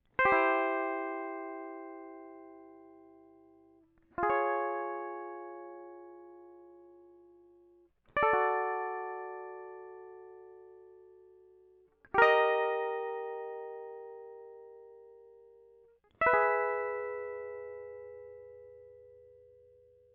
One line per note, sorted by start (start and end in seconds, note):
0.19 2.70 C5
0.26 3.80 G4
0.32 3.88 E4
4.18 7.90 F4
4.23 6.94 G#4
4.30 6.69 C#5
8.17 10.18 D5
8.23 11.29 A4
8.34 11.90 F#4
12.15 15.88 G4
12.15 15.99 A#4
12.22 14.35 D#5
16.22 17.78 E5
16.27 20.15 B4
16.34 20.15 G#4